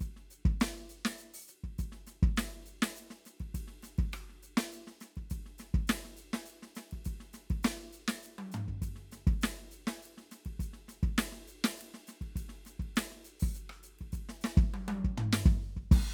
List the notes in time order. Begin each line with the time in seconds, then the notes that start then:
0.01 kick, hi-hat pedal, ride
0.17 snare
0.31 hi-hat pedal, ride
0.46 kick, ride
0.61 snare, hi-hat pedal, ride
0.75 snare
0.90 hi-hat pedal
1.06 snare
1.19 hi-hat pedal
1.34 open hi-hat
1.49 hi-hat pedal, ride
1.64 kick
1.79 kick, hi-hat pedal, ride
1.93 snare
2.07 snare, hi-hat pedal, ride
2.23 kick, ride
2.37 snare, hi-hat pedal, ride
2.48 cross-stick
2.53 cross-stick
2.66 hi-hat pedal
2.83 snare
2.96 hi-hat pedal, ride
3.11 snare
3.26 snare, hi-hat pedal, ride
3.41 kick, ride
3.55 kick, hi-hat pedal, ride
3.68 snare
3.83 snare, hi-hat pedal, ride
3.99 kick, ride
4.13 cross-stick, hi-hat pedal, ride
4.30 snare
4.43 hi-hat pedal, ride
4.58 snare
4.73 hi-hat pedal, ride
4.88 snare
5.01 snare, hi-hat pedal, ride
5.17 kick, ride
5.31 kick, hi-hat pedal, ride
5.46 snare
5.59 snare, hi-hat pedal, ride
5.75 kick, ride
5.88 snare, hi-hat pedal, ride
6.05 snare
6.17 hi-hat pedal, ride
6.34 snare
6.46 hi-hat pedal
6.51 ride
6.63 snare
6.76 snare, hi-hat pedal, ride
6.92 kick, ride
7.05 kick, hi-hat pedal, ride
7.21 snare
7.34 snare, hi-hat pedal, ride
7.51 kick, ride
7.64 snare, hi-hat pedal, ride
7.78 snare
7.93 hi-hat pedal, ride
8.09 snare
8.23 hi-hat pedal, ride
8.39 high tom
8.52 floor tom, hi-hat pedal
8.69 kick
8.82 kick, hi-hat pedal, ride
8.96 snare
9.12 snare, hi-hat pedal, ride
9.28 kick, ride
9.42 snare, hi-hat pedal, ride
9.59 snare
9.72 hi-hat pedal, ride
9.88 snare, ride
10.03 hi-hat pedal, ride
10.18 snare
10.32 snare, hi-hat pedal, ride
10.46 kick, ride
10.60 kick, hi-hat pedal, ride
10.74 snare
10.89 snare, hi-hat pedal, ride
11.04 kick, ride
11.19 snare, hi-hat pedal, ride
11.33 snare
11.48 hi-hat pedal, ride
11.65 snare
11.78 hi-hat pedal
11.82 ride
11.95 snare
12.08 snare, hi-hat pedal, ride
12.22 kick, ride
12.36 kick, hi-hat pedal, ride
12.50 snare
12.66 snare, hi-hat pedal, ride
12.80 kick, ride
12.96 snare, hi-hat pedal, ride
13.12 snare
13.25 hi-hat pedal
13.40 open hi-hat, kick
13.55 hi-hat pedal, ride
13.70 cross-stick
13.84 snare, hi-hat pedal, ride
14.00 kick, ride
14.13 kick, hi-hat pedal, ride
14.30 snare
14.42 snare, hi-hat pedal
14.58 kick
14.75 high tom
14.89 high tom
15.05 kick
15.18 floor tom
15.33 snare
15.46 kick
15.77 kick
15.92 kick, crash